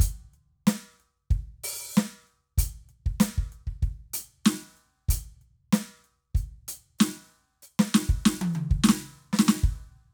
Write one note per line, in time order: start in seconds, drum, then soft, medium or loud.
0.01 closed hi-hat loud
0.01 kick medium
0.35 closed hi-hat soft
0.68 closed hi-hat medium
0.68 snare loud
1.01 closed hi-hat soft
1.32 kick medium
1.32 closed hi-hat soft
1.65 open hi-hat loud
1.97 snare loud
1.97 closed hi-hat medium
1.97 hi-hat pedal medium
2.28 closed hi-hat soft
2.59 closed hi-hat loud
2.59 kick medium
2.90 closed hi-hat soft
3.07 kick medium
3.21 closed hi-hat loud
3.21 snare loud
3.39 kick medium
3.53 closed hi-hat soft
3.68 kick soft
3.84 kick medium
3.84 closed hi-hat soft
4.15 open hi-hat loud
4.46 snare loud
4.46 closed hi-hat soft
4.46 hi-hat pedal soft
4.78 closed hi-hat soft
5.10 closed hi-hat loud
5.10 kick medium
5.42 closed hi-hat soft
5.74 closed hi-hat medium
5.74 snare loud
6.05 closed hi-hat soft
6.36 closed hi-hat soft
6.36 kick medium
6.69 open hi-hat loud
7.00 closed hi-hat medium
7.00 snare loud
7.00 hi-hat pedal soft
7.63 hi-hat pedal medium
7.80 snare loud
7.92 snare loud
7.92 hi-hat pedal soft
8.10 kick medium
8.22 hi-hat pedal soft
8.27 snare loud
8.42 high tom loud
8.54 hi-hat pedal soft
8.54 mid tom medium
8.72 kick medium
8.85 snare loud
8.90 snare loud
9.34 snare medium
9.40 snare loud
9.49 snare loud
9.64 kick medium